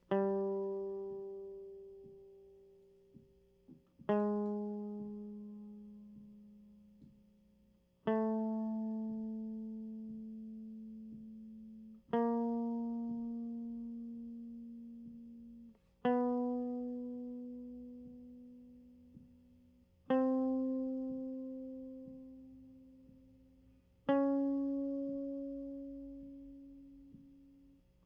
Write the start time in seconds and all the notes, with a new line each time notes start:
0.12 G3
4.10 G#3
8.08 A3
12.14 A#3
16.06 B3
20.11 C4
24.09 C#4